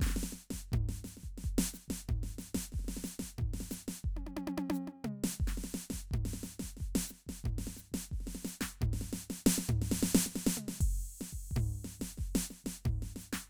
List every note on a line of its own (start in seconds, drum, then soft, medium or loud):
0.01 kick medium
0.01 snare medium
0.07 snare soft
0.10 snare soft
0.17 snare medium
0.23 snare medium
0.30 snare soft
0.33 snare soft
0.51 kick soft
0.51 snare medium
0.72 kick soft
0.72 floor tom medium
0.89 snare soft
1.05 snare soft
1.05 hi-hat pedal medium
1.17 snare soft
1.24 kick soft
1.38 snare soft
1.45 kick soft
1.59 snare loud
1.73 snare soft
1.73 hi-hat pedal medium
1.88 kick soft
1.88 snare medium
2.09 kick soft
2.09 floor tom medium
2.24 snare soft
2.39 snare soft
2.39 hi-hat pedal medium
2.55 kick soft
2.55 snare medium
2.72 kick soft
2.72 snare soft
2.80 snare soft
2.85 snare soft
2.89 snare soft
2.97 snare soft
3.04 snare medium
3.04 hi-hat pedal medium
3.20 kick soft
3.20 snare medium
3.39 kick soft
3.39 floor tom medium
3.54 snare soft
3.61 snare soft
3.71 snare medium
3.71 hi-hat pedal loud
3.88 snare medium
4.05 kick soft
4.17 high tom medium
4.37 high tom medium
4.48 high tom loud
4.58 high tom loud
4.70 hi-hat pedal medium
4.70 high tom loud
4.88 high tom medium
5.05 mid tom loud
5.24 snare medium
5.40 kick medium
5.40 snare soft
5.46 kick soft
5.46 snare soft
5.53 snare soft
5.58 snare soft
5.64 snare soft
5.74 snare medium
5.90 kick soft
5.90 snare medium
6.12 kick soft
6.12 floor tom medium
6.26 snare soft
6.34 snare soft
6.43 snare soft
6.43 hi-hat pedal medium
6.60 kick soft
6.60 snare medium
6.77 kick soft
6.77 snare soft
6.96 snare medium
7.07 snare soft
7.07 hi-hat pedal medium
7.27 kick soft
7.27 snare soft
7.45 kick soft
7.45 floor tom medium
7.59 snare soft
7.67 snare soft
7.77 snare soft
7.77 hi-hat pedal medium
7.92 kick soft
7.92 snare medium
8.12 kick soft
8.12 snare soft
8.21 snare soft
8.27 snare soft
8.35 snare soft
8.43 snare soft
8.43 hi-hat pedal medium
8.61 kick soft
8.61 snare medium
8.82 kick soft
8.82 floor tom medium
8.94 snare soft
9.01 snare soft
9.13 snare medium
9.13 hi-hat pedal soft
9.30 snare medium
9.47 snare loud
9.58 snare medium
9.69 floor tom loud
9.82 snare soft
9.92 snare medium
10.03 snare medium
10.15 snare loud
10.26 snare soft
10.36 snare medium
10.47 snare loud
10.57 mid tom medium
10.69 snare medium
10.81 kick medium
10.81 crash loud
11.21 snare soft
11.33 kick soft
11.52 kick soft
11.57 floor tom loud
11.83 snare soft
11.83 hi-hat pedal soft
12.00 kick soft
12.00 snare medium
12.18 kick soft
12.18 snare soft
12.35 snare medium
12.49 snare soft
12.49 hi-hat pedal soft
12.65 kick soft
12.65 snare medium
12.86 kick soft
12.86 floor tom medium
13.03 snare soft
13.16 snare soft
13.16 hi-hat pedal medium
13.33 kick soft
13.33 snare medium